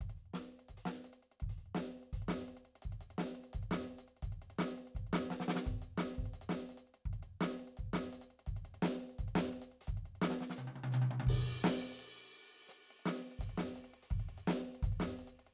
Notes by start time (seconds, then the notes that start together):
0.01 kick, closed hi-hat
0.09 closed hi-hat
0.17 closed hi-hat
0.25 closed hi-hat
0.33 snare
0.43 closed hi-hat
0.52 closed hi-hat
0.59 closed hi-hat
0.69 kick, closed hi-hat
0.77 closed hi-hat
0.85 snare
0.95 closed hi-hat
1.04 closed hi-hat
1.13 closed hi-hat
1.22 closed hi-hat
1.31 closed hi-hat
1.40 kick, closed hi-hat
1.49 closed hi-hat
1.57 closed hi-hat
1.66 closed hi-hat
1.75 snare
1.84 closed hi-hat
1.93 closed hi-hat
2.03 closed hi-hat
2.13 closed hi-hat, kick
2.22 closed hi-hat
2.28 snare
2.40 closed hi-hat
2.48 closed hi-hat
2.57 closed hi-hat
2.65 closed hi-hat
2.75 closed hi-hat
2.82 kick, closed hi-hat
2.92 closed hi-hat
3.01 closed hi-hat
3.10 closed hi-hat
3.18 snare
3.27 closed hi-hat
3.35 closed hi-hat
3.44 closed hi-hat
3.53 kick, closed hi-hat
3.63 closed hi-hat
3.71 snare
3.81 closed hi-hat
3.91 closed hi-hat
3.98 closed hi-hat
4.08 closed hi-hat
4.17 closed hi-hat
4.22 kick, closed hi-hat
4.32 closed hi-hat
4.42 closed hi-hat
4.50 closed hi-hat
4.59 snare
4.68 closed hi-hat
4.78 closed hi-hat
4.87 closed hi-hat
4.95 kick, closed hi-hat
5.07 closed hi-hat
5.13 snare
5.23 closed hi-hat
5.30 snare
5.40 snare
5.48 snare
5.55 snare
5.66 kick, closed hi-hat
5.82 closed hi-hat
5.97 snare
6.15 kick, closed hi-hat
6.25 closed hi-hat
6.34 closed hi-hat
6.41 closed hi-hat
6.49 snare
6.59 closed hi-hat
6.69 closed hi-hat
6.77 closed hi-hat
6.87 closed hi-hat
6.94 closed hi-hat
7.05 kick
7.13 closed hi-hat
7.23 closed hi-hat
7.41 snare
7.51 closed hi-hat
7.59 closed hi-hat
7.67 closed hi-hat
7.77 kick, closed hi-hat
7.93 snare
8.04 closed hi-hat
8.13 closed hi-hat
8.21 closed hi-hat
8.30 closed hi-hat
8.39 closed hi-hat
8.46 kick, closed hi-hat
8.56 closed hi-hat
8.65 closed hi-hat
8.74 closed hi-hat
8.82 snare
8.92 closed hi-hat
9.00 closed hi-hat
9.09 closed hi-hat
9.18 kick, closed hi-hat
9.28 closed hi-hat
9.35 snare
9.45 closed hi-hat
9.53 closed hi-hat
9.62 closed hi-hat
9.71 closed hi-hat
9.81 closed hi-hat
9.87 kick, closed hi-hat
9.97 closed hi-hat
10.05 closed hi-hat
10.15 closed hi-hat
10.21 snare
10.30 snare
10.41 snare
10.50 snare
10.56 hi-hat pedal, high tom
10.67 high tom
10.76 high tom
10.83 high tom
10.92 hi-hat pedal, high tom
11.02 high tom
11.11 high tom
11.20 high tom
11.27 kick, crash
11.64 snare
11.73 closed hi-hat
11.82 closed hi-hat
11.92 closed hi-hat
11.99 closed hi-hat
12.68 hi-hat pedal
12.90 closed hi-hat
12.99 closed hi-hat
13.05 snare
13.15 closed hi-hat
13.24 closed hi-hat
13.31 closed hi-hat
13.39 kick, closed hi-hat
13.49 closed hi-hat
13.57 snare
13.67 closed hi-hat
13.76 closed hi-hat
13.84 closed hi-hat
13.94 closed hi-hat
14.02 closed hi-hat
14.10 kick, closed hi-hat
14.20 closed hi-hat
14.29 closed hi-hat
14.38 closed hi-hat
14.47 snare
14.57 closed hi-hat
14.65 closed hi-hat
14.75 closed hi-hat
14.82 kick, closed hi-hat
14.92 closed hi-hat
15.00 snare
15.09 closed hi-hat
15.19 closed hi-hat
15.27 closed hi-hat
15.39 closed hi-hat
15.46 closed hi-hat